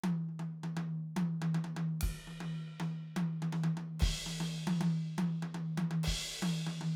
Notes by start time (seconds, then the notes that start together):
0.04 high tom
0.29 high tom
0.39 high tom
0.63 high tom
0.77 high tom
1.16 high tom
1.42 high tom
1.54 high tom
1.64 high tom
1.76 high tom
2.01 kick, ride
2.27 high tom
2.40 high tom
2.67 high tom
2.80 high tom
3.16 high tom
3.42 high tom
3.52 high tom
3.64 high tom
3.77 high tom
4.00 kick, ride
4.26 high tom
4.40 high tom
4.67 high tom
4.81 high tom
5.18 high tom
5.42 high tom
5.54 high tom
5.78 high tom
5.91 high tom
6.03 ride
6.07 kick
6.42 high tom
6.67 high tom
6.81 high tom